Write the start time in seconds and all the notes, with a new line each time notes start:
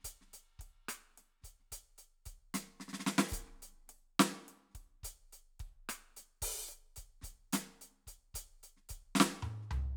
0.01 closed hi-hat, kick, snare
0.22 snare
0.27 snare
0.33 closed hi-hat, snare
0.60 kick, closed hi-hat
0.89 closed hi-hat, cross-stick
1.18 snare, closed hi-hat
1.42 closed hi-hat, kick, snare
1.60 snare
1.72 closed hi-hat, kick
1.99 closed hi-hat
2.26 closed hi-hat, kick
2.55 closed hi-hat, snare
2.81 snare
2.89 snare
2.94 snare
3.00 snare
3.07 snare
3.19 snare
3.29 kick, hi-hat pedal
3.34 closed hi-hat
3.39 kick
3.48 cross-stick
3.63 closed hi-hat
3.89 snare, closed hi-hat
4.20 open hi-hat, snare, hi-hat pedal
4.49 closed hi-hat
4.71 snare
4.75 kick, snare, closed hi-hat
5.04 closed hi-hat, kick, hi-hat pedal
5.33 closed hi-hat
5.60 kick, closed hi-hat
5.90 closed hi-hat, cross-stick
6.17 closed hi-hat, snare
6.43 open hi-hat, kick
6.68 closed hi-hat, hi-hat pedal
6.97 closed hi-hat, kick
7.22 closed hi-hat, kick, snare
7.53 closed hi-hat, snare
7.82 closed hi-hat
8.08 closed hi-hat, kick
8.35 closed hi-hat, kick
8.64 closed hi-hat
8.77 snare
8.90 closed hi-hat, kick
9.16 snare
9.21 snare
9.30 snare
9.43 mid tom
9.62 snare
9.72 floor tom